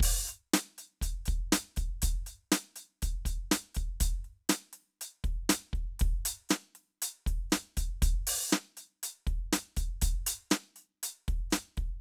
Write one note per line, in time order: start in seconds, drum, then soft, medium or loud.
0.01 open hi-hat loud
0.01 kick medium
0.28 open hi-hat medium
0.28 hi-hat pedal medium
0.54 closed hi-hat loud
0.54 snare loud
0.79 closed hi-hat medium
1.02 closed hi-hat medium
1.02 kick medium
1.27 closed hi-hat medium
1.27 kick medium
1.53 closed hi-hat loud
1.53 snare loud
1.77 closed hi-hat soft
1.77 kick medium
2.03 closed hi-hat loud
2.03 kick medium
2.27 closed hi-hat medium
2.53 closed hi-hat loud
2.53 snare loud
2.77 closed hi-hat medium
3.03 closed hi-hat medium
3.03 kick medium
3.26 closed hi-hat medium
3.26 kick medium
3.52 closed hi-hat medium
3.52 snare loud
3.76 closed hi-hat soft
3.76 kick medium
4.01 closed hi-hat loud
4.01 kick medium
4.25 closed hi-hat soft
4.50 closed hi-hat loud
4.50 snare loud
4.74 closed hi-hat medium
5.02 closed hi-hat medium
5.25 kick medium
5.25 closed hi-hat soft
5.50 closed hi-hat loud
5.50 snare loud
5.74 kick medium
5.74 closed hi-hat soft
6.00 kick medium
6.00 closed hi-hat medium
6.26 open hi-hat loud
6.50 snare loud
6.50 hi-hat pedal medium
6.76 closed hi-hat soft
7.03 closed hi-hat loud
7.27 kick medium
7.27 closed hi-hat medium
7.51 closed hi-hat medium
7.51 snare loud
7.51 hi-hat pedal soft
7.78 closed hi-hat medium
7.78 kick medium
8.03 closed hi-hat medium
8.03 kick medium
8.28 open hi-hat loud
8.51 snare loud
8.51 hi-hat pedal medium
8.78 closed hi-hat medium
9.04 closed hi-hat medium
9.28 kick medium
9.28 closed hi-hat soft
9.54 closed hi-hat medium
9.54 snare loud
9.78 closed hi-hat medium
9.78 kick medium
10.03 closed hi-hat loud
10.03 kick medium
10.27 closed hi-hat loud
10.51 snare loud
10.51 hi-hat pedal medium
10.77 hi-hat pedal soft
10.77 open hi-hat soft
11.04 closed hi-hat loud
11.29 kick medium
11.29 closed hi-hat soft
11.51 closed hi-hat medium
11.51 snare loud
11.51 hi-hat pedal soft
11.78 kick medium
11.78 closed hi-hat soft